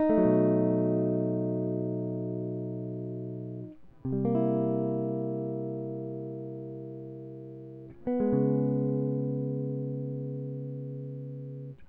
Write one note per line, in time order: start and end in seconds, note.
0.00 3.76 D#4
0.10 3.63 A3
0.18 3.73 F#3
0.26 3.67 B2
4.06 7.96 C3
4.13 7.94 G3
4.25 7.87 A#3
4.35 8.14 E4
8.07 11.74 B3
8.20 11.77 G#3
8.34 11.76 C#3